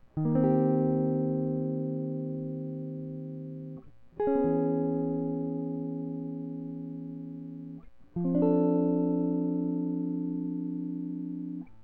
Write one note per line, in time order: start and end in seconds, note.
0.18 3.81 D#3
0.26 3.82 A#3
0.36 3.82 C4
0.44 3.82 G4
4.20 7.30 G#4
4.28 7.81 C#4
4.36 7.71 E3
4.36 7.81 B3
8.17 11.66 F3
8.25 11.63 C4
8.35 11.64 D4
8.43 11.09 A4